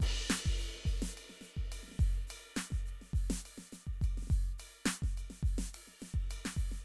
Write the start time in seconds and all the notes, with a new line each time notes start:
0.01 kick, hi-hat pedal, ride
0.29 snare, hi-hat pedal
0.45 kick, snare
0.58 hi-hat pedal
0.62 ride
0.75 snare
0.86 kick, hi-hat pedal, ride
1.01 snare, ride
1.16 hi-hat pedal, ride bell
1.30 snare
1.42 snare, hi-hat pedal, ride
1.55 kick, ride
1.72 hi-hat pedal, ride bell
1.84 snare
1.89 snare
1.92 snare
1.96 snare
2.00 kick, hi-hat pedal, ride
2.16 ride
2.28 hi-hat pedal, ride bell
2.56 snare, hi-hat pedal, ride
2.71 kick, snare
2.86 hi-hat pedal, ride
3.02 snare
3.14 kick, hi-hat pedal, ride
3.29 snare, ride
3.45 hi-hat pedal, ride bell
3.58 snare
3.72 snare, hi-hat pedal, ride
3.87 kick, ride
4.02 kick, hi-hat pedal, ride bell
4.18 snare
4.23 snare
4.28 kick, snare, hi-hat pedal
4.33 ride
4.46 ride
4.59 hi-hat pedal, ride bell
4.86 snare, hi-hat pedal, ride
5.03 kick, snare
5.17 hi-hat pedal, ride bell
5.31 snare
5.43 kick, hi-hat pedal, ride
5.58 snare, ride
5.74 hi-hat pedal, ride
5.88 snare
6.00 snare, hi-hat pedal, ride
6.15 kick, ride
6.30 hi-hat pedal, ride bell
6.46 snare
6.57 kick, hi-hat pedal, ride
6.72 snare